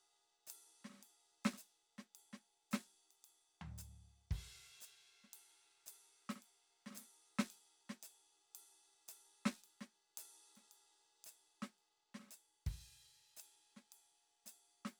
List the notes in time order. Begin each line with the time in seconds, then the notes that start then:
0.47 hi-hat pedal, ride
0.84 snare
0.90 snare
0.93 snare
0.96 snare
0.99 snare
1.03 ride
1.45 snare, ride
1.53 snare
1.58 hi-hat pedal, ride
1.98 snare
2.15 ride
2.33 snare
2.71 snare, hi-hat pedal, ride
3.11 ride
3.24 ride
3.61 floor tom
3.78 hi-hat pedal, ride
4.31 kick, crash
4.81 hi-hat pedal, ride
5.24 snare
5.33 ride
5.86 hi-hat pedal, ride
6.29 snare, ride
6.36 snare
6.42 ride
6.86 snare
6.91 snare
6.94 snare, hi-hat pedal
6.97 snare, ride
7.01 snare
7.39 snare, ride
7.50 ride
7.89 snare
8.03 hi-hat pedal, ride
8.55 ride
9.08 hi-hat pedal, ride
9.46 snare
9.64 ride
9.81 snare
10.17 hi-hat pedal, ride
10.55 snare, ride
10.62 snare
10.71 ride
11.24 hi-hat pedal, ride
11.62 snare
11.78 ride
12.14 snare
12.19 snare
12.23 snare
12.27 snare
12.31 hi-hat pedal, ride
12.66 kick, ride, crash
12.82 ride
13.37 hi-hat pedal, ride
13.76 snare
13.92 ride
14.46 snare, hi-hat pedal, ride
14.85 snare, ride